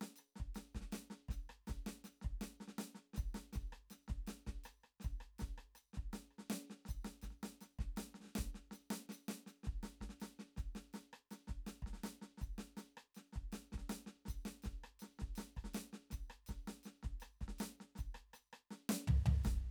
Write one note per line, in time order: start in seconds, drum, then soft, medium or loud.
0.01 snare medium
0.16 cross-stick soft
0.16 hi-hat pedal soft
0.36 snare soft
0.40 kick soft
0.55 snare medium
0.55 hi-hat pedal soft
0.75 kick soft
0.75 snare soft
0.81 snare soft
0.92 snare medium
0.92 hi-hat pedal soft
1.10 snare soft
1.29 kick soft
1.29 snare soft
1.29 hi-hat pedal soft
1.49 cross-stick medium
1.67 kick soft
1.67 snare medium
1.67 hi-hat pedal soft
1.86 snare medium
2.04 snare soft
2.04 hi-hat pedal soft
2.21 kick soft
2.21 snare soft
2.41 snare medium
2.41 hi-hat pedal soft
2.60 snare soft
2.68 snare soft
2.78 snare medium
2.78 hi-hat pedal soft
2.95 snare soft
3.13 snare soft
3.13 hi-hat pedal soft
3.18 kick soft
3.34 snare medium
3.53 kick soft
3.53 snare soft
3.53 hi-hat pedal soft
3.72 cross-stick medium
3.90 snare soft
3.90 hi-hat pedal soft
4.08 kick soft
4.08 snare soft
4.27 snare medium
4.27 hi-hat pedal soft
4.47 kick soft
4.47 snare soft
4.64 cross-stick medium
4.64 hi-hat pedal soft
4.83 cross-stick soft
5.00 snare soft
5.00 hi-hat pedal soft
5.03 kick soft
5.03 snare soft
5.20 cross-stick soft
5.38 kick soft
5.38 snare medium
5.38 hi-hat pedal soft
5.58 cross-stick soft
5.75 cross-stick soft
5.75 hi-hat pedal soft
5.93 kick soft
5.93 snare soft
6.13 snare medium
6.13 hi-hat pedal soft
6.31 cross-stick soft
6.38 snare soft
6.50 snare medium
6.50 hi-hat pedal soft
6.70 snare soft
6.85 kick soft
6.85 snare soft
6.85 hi-hat pedal soft
7.05 snare medium
7.22 kick soft
7.22 snare soft
7.22 hi-hat pedal soft
7.30 snare soft
7.43 snare medium
7.61 snare soft
7.61 hi-hat pedal soft
7.79 kick soft
7.79 snare soft
7.96 snare medium
7.96 hi-hat pedal soft
8.14 snare soft
8.20 snare soft
8.23 snare soft
8.26 snare soft
8.35 kick soft
8.35 snare medium
8.35 hi-hat pedal soft
8.54 snare soft
8.71 snare soft
8.71 hi-hat pedal soft
8.90 snare medium
9.09 snare medium
9.09 hi-hat pedal soft
9.28 snare medium
9.46 snare soft
9.46 hi-hat pedal soft
9.63 kick soft
9.63 snare soft
9.83 snare medium
9.83 hi-hat pedal soft
10.01 kick soft
10.01 snare soft
10.09 snare soft
10.20 snare medium
10.20 hi-hat pedal soft
10.39 snare soft
10.56 kick soft
10.56 snare soft
10.56 hi-hat pedal soft
10.75 snare medium
10.93 snare medium
10.93 hi-hat pedal soft
11.13 cross-stick medium
11.31 snare soft
11.31 hi-hat pedal soft
11.47 kick soft
11.47 snare soft
11.67 snare medium
11.67 hi-hat pedal soft
11.82 kick soft
11.82 snare soft
11.93 snare soft
11.96 snare soft
12.04 snare medium
12.04 hi-hat pedal soft
12.22 snare soft
12.38 kick soft
12.38 snare soft
12.38 hi-hat pedal soft
12.58 snare medium
12.77 snare medium
12.77 hi-hat pedal soft
12.97 cross-stick medium
13.15 snare soft
13.15 hi-hat pedal soft
13.33 kick soft
13.33 snare soft
13.52 snare medium
13.52 hi-hat pedal soft
13.72 kick soft
13.72 snare soft
13.78 snare soft
13.89 snare medium
13.89 hi-hat pedal soft
14.06 snare soft
14.25 kick soft
14.25 snare soft
14.25 hi-hat pedal soft
14.45 snare medium
14.62 kick soft
14.62 snare soft
14.62 hi-hat pedal soft
14.84 cross-stick medium
14.99 snare soft
14.99 hi-hat pedal soft
15.19 kick soft
15.19 snare soft
15.35 snare medium
15.35 hi-hat pedal soft
15.57 kick soft
15.57 cross-stick soft
15.64 snare soft
15.74 snare medium
15.74 hi-hat pedal soft
15.93 snare soft
16.10 kick soft
16.10 snare soft
16.10 hi-hat pedal soft
16.30 cross-stick medium
16.46 kick soft
16.46 snare soft
16.46 hi-hat pedal soft
16.67 snare medium
16.83 snare soft
16.83 hi-hat pedal soft
17.03 kick soft
17.03 snare soft
17.20 cross-stick medium
17.20 hi-hat pedal soft
17.41 kick soft
17.41 snare soft
17.48 snare soft
17.58 snare medium
17.58 hi-hat pedal soft
17.80 snare soft
17.95 kick soft
17.95 snare soft
17.95 hi-hat pedal soft
18.14 cross-stick medium
18.33 cross-stick soft
18.33 hi-hat pedal soft
18.53 cross-stick medium
18.71 snare soft
18.89 snare medium
19.07 floor tom medium
19.26 floor tom loud
19.44 kick soft
19.44 snare medium
19.44 hi-hat pedal soft